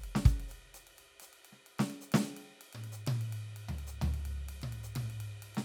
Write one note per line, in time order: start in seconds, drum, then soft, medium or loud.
0.01 hi-hat pedal soft
0.01 ride medium
0.16 snare medium
0.26 kick loud
0.26 hi-hat pedal medium
0.26 ride medium
0.40 ride soft
0.49 hi-hat pedal soft
0.49 ride medium
0.75 hi-hat pedal medium
0.75 ride medium
0.87 ride soft
0.96 hi-hat pedal soft
0.96 ride medium
1.20 hi-hat pedal medium
1.20 ride medium
1.33 ride soft
1.43 hi-hat pedal soft
1.43 ride medium
1.52 snare soft
1.67 ride soft
1.79 snare loud
1.79 ride medium
1.90 ride soft
2.01 hi-hat pedal medium
2.12 snare loud
2.12 ride medium
2.26 ride medium
2.37 ride medium
2.61 ride medium
2.73 high tom medium
2.73 ride medium
2.84 ride medium
2.92 hi-hat pedal medium
3.07 high tom loud
3.07 ride medium
3.21 ride medium
3.33 ride medium
3.57 ride medium
3.69 floor tom medium
3.69 ride soft
3.79 ride soft
3.87 hi-hat pedal medium
4.02 floor tom loud
4.02 ride medium
4.14 ride soft
4.26 ride medium
4.49 ride medium
4.62 high tom medium
4.62 ride medium
4.73 ride medium
4.84 hi-hat pedal medium
4.96 high tom loud
4.96 ride medium
5.10 ride soft
5.21 ride medium
5.43 ride medium
5.55 snare medium
5.55 ride medium